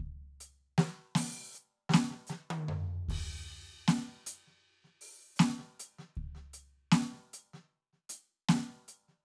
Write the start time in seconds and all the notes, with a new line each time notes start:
0.01 kick
0.42 closed hi-hat
0.79 snare
1.16 open hi-hat, snare
1.55 hi-hat pedal
1.91 snare
1.95 snare
2.12 snare
2.28 snare, hi-hat pedal
2.51 high tom
2.70 floor tom
3.10 kick, crash
3.89 snare
4.02 snare
4.08 snare
4.28 closed hi-hat
4.48 snare
4.85 snare
5.02 open hi-hat
5.37 snare, hi-hat pedal
5.59 snare
5.81 closed hi-hat
6.00 snare
6.17 kick, closed hi-hat
6.36 snare
6.54 closed hi-hat
6.93 snare
7.14 snare
7.34 closed hi-hat
7.55 snare
7.94 snare
8.10 closed hi-hat
8.50 snare
8.55 snare
8.89 closed hi-hat
9.09 snare